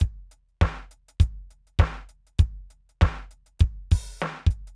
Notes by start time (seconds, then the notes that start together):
0.01 kick, closed hi-hat
0.31 closed hi-hat
0.49 closed hi-hat
0.61 kick, snare
0.91 closed hi-hat
1.08 closed hi-hat
1.20 kick, closed hi-hat
1.51 closed hi-hat
1.67 closed hi-hat
1.79 kick, snare
2.09 closed hi-hat
2.27 closed hi-hat
2.39 kick, closed hi-hat
2.70 closed hi-hat
2.89 closed hi-hat
3.01 kick, snare
3.31 closed hi-hat
3.46 closed hi-hat
3.59 kick, closed hi-hat
3.91 kick, open hi-hat
4.20 closed hi-hat, snare, hi-hat pedal
4.46 kick
4.51 closed hi-hat
4.67 closed hi-hat